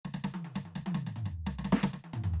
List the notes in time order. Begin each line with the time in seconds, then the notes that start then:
0.06 snare
0.14 snare
0.24 snare
0.35 high tom
0.45 high tom
0.55 snare, hi-hat pedal
0.66 high tom
0.76 snare
0.87 high tom
0.95 snare
1.07 snare
1.17 hi-hat pedal, mid tom
1.26 snare
1.47 snare
1.59 snare
1.65 snare
1.73 snare
1.82 snare, hi-hat pedal
1.94 snare
2.05 high tom
2.14 mid tom
2.24 high tom
2.34 floor tom